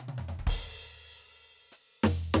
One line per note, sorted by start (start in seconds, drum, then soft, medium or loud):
0.00 mid tom medium
0.08 mid tom medium
0.18 floor tom medium
0.28 floor tom medium
0.39 kick soft
0.39 floor tom soft
0.47 kick loud
0.47 crash loud
1.72 hi-hat pedal loud
2.04 snare loud
2.04 floor tom loud
2.34 snare loud
2.34 floor tom loud